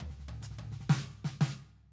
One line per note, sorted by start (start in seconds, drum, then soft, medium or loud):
0.00 floor tom medium
0.10 snare soft
0.20 snare soft
0.28 high tom medium
0.42 snare soft
0.42 percussion medium
0.51 snare soft
0.59 high tom medium
0.72 snare soft
0.81 snare soft
0.88 snare loud
0.88 percussion soft
1.25 snare medium
1.41 snare loud
1.41 percussion medium